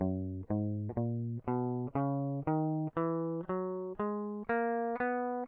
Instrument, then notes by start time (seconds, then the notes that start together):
electric guitar
0.02 F#2
0.52 G#2
0.98 A#2
1.49 B2
1.96 C#3
2.48 D#3
2.97 E3
3.50 F#3
4.00 G#3
4.49 A#3
5.00 B3